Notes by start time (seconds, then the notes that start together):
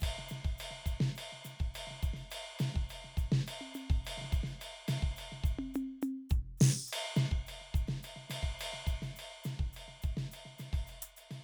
0.01 kick, hi-hat pedal, ride bell
0.19 snare
0.29 snare, hi-hat pedal, ride
0.45 kick, ride
0.59 hi-hat pedal, ride bell
0.71 snare
0.86 kick, hi-hat pedal, ride
1.01 snare, ride
1.16 hi-hat pedal, ride bell
1.33 snare
1.45 snare, hi-hat pedal, ride
1.60 kick, ride
1.75 hi-hat pedal, ride bell
1.87 snare
1.91 snare
2.03 kick, hi-hat pedal, ride
2.14 snare, ride
2.31 hi-hat pedal, ride bell
2.59 snare, hi-hat pedal, ride
2.75 kick, snare
2.90 hi-hat pedal, ride
3.05 snare
3.18 kick, hi-hat pedal, ride
3.32 snare
3.47 hi-hat pedal, ride bell
3.62 high tom
3.75 hi-hat pedal, high tom, ride
3.90 kick, ride
4.05 hi-hat pedal, ride bell
4.18 snare
4.22 snare
4.25 snare
4.33 kick, hi-hat pedal, ride
4.44 snare, ride
4.61 hi-hat pedal, ride bell
4.88 snare, hi-hat pedal, ride
5.03 kick, snare
5.17 hi-hat pedal, ride bell
5.32 snare
5.44 kick, hi-hat pedal, ride bell
5.59 high tom
5.75 hi-hat pedal, high tom
6.02 hi-hat pedal, high tom
6.30 kick, hi-hat pedal
6.58 snare, hi-hat pedal, crash
6.88 hi-hat pedal
6.93 ride
7.16 snare, hi-hat pedal
7.32 kick, snare
7.47 hi-hat pedal, ride bell
7.62 snare
7.75 kick, hi-hat pedal, ride
7.88 snare, ride
8.03 hi-hat pedal, ride bell
8.17 snare
8.30 snare, hi-hat pedal, ride
8.43 kick, ride
8.59 hi-hat pedal, ride bell
8.74 snare
8.87 kick, hi-hat pedal, ride
9.03 snare, ride
9.16 hi-hat pedal, ride bell
9.44 snare, hi-hat pedal, ride bell
9.60 kick, snare
9.73 hi-hat pedal, ride bell
9.89 snare
10.02 kick, hi-hat pedal, ride bell
10.17 snare, ride
10.32 hi-hat pedal, ride bell
10.46 snare
10.59 snare, hi-hat pedal, ride
10.73 kick, ride
10.87 hi-hat pedal, ride bell
11.03 open hi-hat
11.17 hi-hat pedal, ride bell
11.31 snare, ride